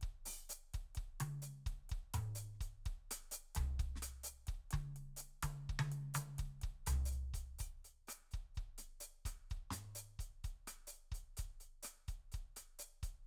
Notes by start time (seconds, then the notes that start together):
0.01 kick, closed hi-hat
0.25 open hi-hat, snare
0.49 hi-hat pedal
0.74 kick, closed hi-hat
0.95 kick, closed hi-hat
1.20 closed hi-hat, high tom
1.42 closed hi-hat, hi-hat pedal
1.66 kick, closed hi-hat
1.72 kick
1.89 kick, closed hi-hat
2.14 closed hi-hat, mid tom
2.35 closed hi-hat, hi-hat pedal
2.54 snare
2.60 closed hi-hat, kick
2.85 kick, closed hi-hat
3.11 closed hi-hat, cross-stick, snare
3.31 closed hi-hat, hi-hat pedal
3.55 kick, closed hi-hat, floor tom
3.79 kick, closed hi-hat
3.96 snare
4.02 closed hi-hat, cross-stick
4.23 closed hi-hat, hi-hat pedal
4.47 kick, closed hi-hat
4.54 kick
4.71 kick, closed hi-hat, high tom
4.96 closed hi-hat
5.16 closed hi-hat, hi-hat pedal
5.42 kick, closed hi-hat, high tom
5.69 kick
5.79 high tom
5.92 closed hi-hat
6.14 hi-hat pedal, open hi-hat, high tom
6.38 kick, closed hi-hat
6.45 kick
6.61 kick, closed hi-hat
6.86 closed hi-hat, floor tom
7.05 hi-hat pedal
7.11 closed hi-hat
7.34 closed hi-hat, kick
7.59 open hi-hat, kick
7.84 closed hi-hat
8.07 open hi-hat, cross-stick, snare, hi-hat pedal
8.31 closed hi-hat, kick
8.55 open hi-hat, kick
8.78 closed hi-hat, snare
9.00 closed hi-hat, hi-hat pedal
9.25 closed hi-hat, kick, cross-stick, snare
9.50 closed hi-hat, kick
9.56 kick
9.70 closed hi-hat, snare, mid tom
9.95 closed hi-hat, hi-hat pedal
10.19 closed hi-hat, kick
10.44 closed hi-hat, kick
10.67 closed hi-hat, cross-stick, snare
10.87 hi-hat pedal
10.92 closed hi-hat
11.12 closed hi-hat, kick
11.37 closed hi-hat, kick, cross-stick
11.44 kick
11.60 closed hi-hat
11.82 closed hi-hat, cross-stick, snare, hi-hat pedal
12.08 closed hi-hat, kick
12.32 closed hi-hat, kick
12.56 closed hi-hat, cross-stick
12.79 hi-hat pedal
13.03 closed hi-hat, kick